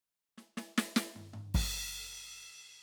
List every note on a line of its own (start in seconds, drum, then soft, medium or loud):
0.38 snare soft
0.57 snare medium
0.78 snare loud
0.96 snare loud
1.16 floor tom soft
1.34 floor tom medium
1.55 kick medium
1.55 crash loud